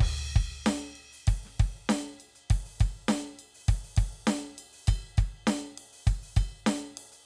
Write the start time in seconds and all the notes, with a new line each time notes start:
0.01 kick, crash
0.36 kick
0.66 snare, ride bell
0.96 ride
1.12 open hi-hat
1.27 kick, open hi-hat, ride
1.45 snare
1.60 kick, snare, ride
1.89 snare, ride bell
2.20 ride bell
2.35 closed hi-hat
2.50 kick, open hi-hat, ride
2.65 open hi-hat
2.80 kick, snare, ride bell
3.08 snare, ride bell
3.39 ride bell
3.54 open hi-hat
3.68 kick, ride
3.84 open hi-hat
3.97 kick, ride
4.27 snare, ride bell
4.58 ride bell
4.73 open hi-hat
4.87 kick, ride bell
5.17 kick, ride bell
5.47 snare, ride bell
5.78 ride
5.93 open hi-hat
6.07 kick, ride bell
6.23 open hi-hat
6.37 kick, ride bell
6.66 snare, ride bell
6.97 ride
7.12 closed hi-hat